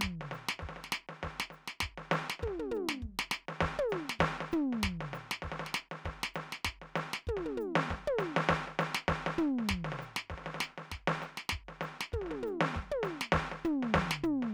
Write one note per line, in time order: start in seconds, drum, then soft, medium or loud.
0.01 kick soft
0.01 snare loud
0.21 snare soft
0.31 snare medium
0.31 hi-hat pedal soft
0.48 snare loud
0.59 kick soft
0.59 snare soft
0.69 snare soft
0.76 snare soft
0.84 snare soft
0.92 snare loud
0.92 hi-hat pedal soft
1.09 snare soft
1.23 kick soft
1.23 snare medium
1.40 snare loud
1.50 snare soft
1.50 hi-hat pedal soft
1.68 snare medium
1.80 kick soft
1.80 snare loud
1.98 snare soft
2.11 snare loud
2.11 hi-hat pedal soft
2.30 snare loud
2.39 kick soft
2.39 snare soft
2.39 mid tom medium
2.47 snare soft
2.59 mid tom medium
2.71 hi-hat pedal soft
2.71 mid tom loud
2.76 mid tom soft
2.89 snare loud
3.02 kick soft
3.19 snare loud
3.31 snare loud
3.31 hi-hat pedal soft
3.48 snare medium
3.60 kick soft
3.60 snare loud
3.78 high tom loud
3.89 snare medium
3.89 hi-hat pedal soft
4.09 snare loud
4.19 kick soft
4.19 snare loud
4.40 snare medium
4.52 floor tom loud
4.52 hi-hat pedal medium
4.73 snare soft
4.83 kick soft
4.83 snare loud
4.89 kick soft
5.01 snare medium
5.13 snare medium
5.13 hi-hat pedal medium
5.31 snare loud
5.42 kick soft
5.42 snare medium
5.52 snare medium
5.59 snare medium
5.66 snare soft
5.74 snare loud
5.74 hi-hat pedal soft
5.91 snare medium
6.05 kick soft
6.05 snare medium
6.23 snare loud
6.34 snare medium
6.34 hi-hat pedal soft
6.52 snare medium
6.65 kick soft
6.65 snare loud
6.82 snare soft
6.96 snare medium
6.96 hi-hat pedal soft
7.13 snare loud
7.27 kick soft
7.27 mid tom loud
7.37 snare soft
7.45 mid tom medium
7.57 hi-hat pedal soft
7.57 mid tom medium
7.75 snare loud
7.90 kick soft
7.90 snare medium
8.07 high tom loud
8.19 snare medium
8.19 hi-hat pedal medium
8.36 snare loud
8.49 kick soft
8.49 snare loud
8.68 snare soft
8.79 snare loud
8.79 hi-hat pedal soft
8.95 snare loud
9.08 kick soft
9.08 snare loud
9.26 snare medium
9.37 floor tom loud
9.37 hi-hat pedal soft
9.59 snare soft
9.69 kick soft
9.69 snare loud
9.84 snare medium
9.92 snare medium
9.99 snare soft
9.99 hi-hat pedal medium
10.16 snare loud
10.30 kick soft
10.30 snare soft
10.38 snare soft
10.44 snare soft
10.46 snare medium
10.54 snare soft
10.60 snare loud
10.60 hi-hat pedal soft
10.78 snare soft
10.92 kick soft
10.92 snare medium
11.07 snare loud
11.22 snare soft
11.22 hi-hat pedal soft
11.37 snare medium
11.49 kick soft
11.49 snare loud
11.68 snare soft
11.81 snare medium
11.81 hi-hat pedal soft
12.01 snare loud
12.12 kick soft
12.12 snare soft
12.12 mid tom medium
12.21 kick soft
12.21 snare soft
12.26 snare soft
12.30 snare soft
12.30 mid tom medium
12.42 mid tom medium
12.46 hi-hat pedal soft
12.46 mid tom soft
12.61 snare loud
12.75 kick soft
12.75 snare soft
12.91 high tom loud
13.03 snare medium
13.03 hi-hat pedal soft
13.21 snare loud
13.32 kick soft
13.32 snare loud
13.39 kick soft
13.52 snare medium
13.64 floor tom loud
13.64 hi-hat pedal soft
13.82 snare soft
13.94 kick soft
13.94 snare loud
14.00 kick soft
14.11 snare loud
14.23 hi-hat pedal soft
14.23 floor tom loud
14.42 snare soft